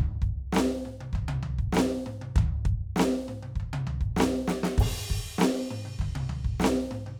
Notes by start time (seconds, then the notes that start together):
0.22 kick
0.53 snare
0.56 snare
0.85 mid tom
1.01 high tom
1.13 kick, floor tom
1.28 high tom
1.43 floor tom
1.58 kick
1.73 snare
1.77 snare
2.06 mid tom
2.21 high tom
2.36 kick, floor tom
2.65 kick
2.96 snare
3.00 snare
3.28 mid tom
3.43 high tom
3.55 kick
3.60 floor tom
3.73 high tom
3.87 floor tom
4.01 kick
4.16 snare
4.20 snare
4.48 snare
4.63 snare
4.78 kick, crash
5.10 kick
5.38 snare
5.41 snare
5.71 mid tom
5.85 high tom
5.99 kick, floor tom
6.15 high tom
6.29 floor tom
6.44 kick
6.60 snare
6.64 snare
6.91 mid tom
7.06 high tom